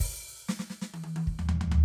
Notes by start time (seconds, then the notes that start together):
0.02 open hi-hat, kick
0.49 snare
0.59 snare
0.70 snare
0.82 snare
0.94 high tom
1.04 high tom
1.16 high tom
1.27 kick
1.39 floor tom
1.49 floor tom
1.61 floor tom
1.72 floor tom